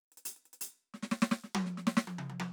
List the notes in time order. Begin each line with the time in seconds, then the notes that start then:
0.12 closed hi-hat
0.17 closed hi-hat
0.25 closed hi-hat
0.36 closed hi-hat
0.45 closed hi-hat
0.53 closed hi-hat
0.61 closed hi-hat
0.94 snare
1.03 snare
1.11 snare
1.22 snare
1.31 snare
1.44 snare
1.55 high tom
1.66 snare
1.77 snare
1.87 snare
2.07 high tom
2.18 mid tom
2.30 high tom
2.40 high tom